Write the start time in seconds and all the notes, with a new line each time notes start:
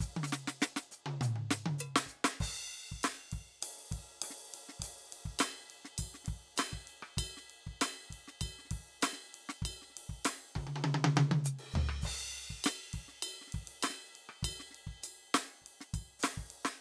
0.01 kick, hi-hat pedal
0.08 kick
0.17 high tom
0.24 snare, hi-hat pedal
0.33 snare
0.48 snare
0.60 snare, hi-hat pedal
0.77 snare
0.92 hi-hat pedal
1.06 high tom
1.21 hi-hat pedal, mid tom
1.36 high tom
1.51 snare, hi-hat pedal
1.66 high tom
1.79 hi-hat pedal, percussion
1.96 snare
2.07 kick, hi-hat pedal
2.25 snare
2.41 kick, hi-hat pedal, crash
2.48 kick, cross-stick
2.52 kick
2.92 kick
3.04 snare, hi-hat pedal, ride bell
3.32 kick, ride
3.40 kick
3.62 hi-hat pedal, ride
3.78 snare
3.81 snare
3.92 kick, ride
3.99 kick
4.22 cross-stick, ride
4.31 snare
4.54 ride
4.69 snare
4.80 kick, hi-hat pedal, ride
5.13 ride
5.26 kick
5.39 snare, hi-hat pedal, ride bell
5.70 ride
5.85 snare
5.98 kick, hi-hat pedal, ride bell
6.06 kick
6.15 snare
6.25 kick, snare, ride
6.35 kick
6.57 snare, hi-hat pedal, ride bell
6.72 kick, snare
6.88 hi-hat pedal, ride
7.03 cross-stick
7.18 kick, hi-hat pedal, ride bell
7.25 kick
7.37 snare
7.50 ride
7.67 kick
7.82 snare, hi-hat pedal, ride bell
8.11 kick, ride
8.28 snare
8.41 kick, ride bell
8.48 kick
8.59 snare
8.65 snare
8.71 kick, ride
8.78 kick
8.81 kick
9.02 snare, hi-hat pedal, ride bell
9.13 snare
9.35 ride
9.49 snare
9.62 kick, hi-hat pedal, ride bell
9.69 kick
9.82 snare
9.90 snare
9.97 ride
10.10 kick
10.15 kick
10.25 snare, hi-hat pedal, ride bell
10.56 kick, high tom
10.61 kick, hi-hat pedal
10.67 high tom
10.76 high tom
10.84 high tom
10.95 high tom
11.05 high tom
11.16 hi-hat pedal, high tom
11.32 high tom
11.45 closed hi-hat, hi-hat pedal
11.59 ride
11.72 kick, floor tom, hi-hat pedal
11.89 cross-stick
12.02 kick, hi-hat pedal, crash
12.14 cross-stick
12.51 kick
12.64 snare, hi-hat pedal, ride bell
12.94 kick, ride
13.00 kick
13.08 snare
13.23 hi-hat pedal, ride bell
13.42 snare
13.48 snare
13.51 kick, snare, ride
13.61 kick
13.68 ride
13.83 snare, hi-hat pedal, ride bell
13.90 snare
14.16 ride
14.29 cross-stick
14.43 kick, hi-hat pedal, ride bell
14.50 kick
14.60 snare
14.71 snare, ride
14.87 kick
15.03 hi-hat pedal, ride bell
15.35 snare, ride bell
15.62 kick
15.67 ride
15.81 snare
15.94 kick, ride bell
16.02 kick
16.20 hi-hat pedal, ride
16.24 snare
16.34 kick, snare
16.51 ride
16.65 snare